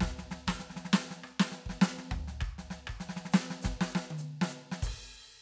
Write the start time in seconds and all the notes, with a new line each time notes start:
0.01 kick, snare
0.09 kick
0.12 kick
0.19 snare
0.30 snare, hi-hat pedal
0.48 kick, snare
0.60 snare
0.70 snare
0.77 snare
0.85 snare
0.92 snare, hi-hat pedal
1.11 snare
1.24 cross-stick
1.40 snare
1.49 snare, hi-hat pedal
1.66 kick, snare
1.82 snare
1.98 snare
2.11 kick, hi-hat pedal, floor tom
2.17 kick
2.28 snare
2.41 kick, cross-stick
2.49 kick
2.59 snare
2.71 snare, hi-hat pedal
2.88 kick, cross-stick
3.00 snare
3.09 snare
3.17 snare
3.25 snare
3.32 snare, hi-hat pedal
3.51 snare
3.62 kick, snare, hi-hat pedal
3.72 kick
3.76 kick
3.81 snare
3.90 hi-hat pedal
3.95 snare
4.11 open hi-hat, high tom
4.18 hi-hat pedal
4.42 snare
4.49 hi-hat pedal
4.72 snare
4.83 kick, hi-hat pedal, crash
4.87 kick, cross-stick
4.94 kick
5.04 cross-stick
5.25 cross-stick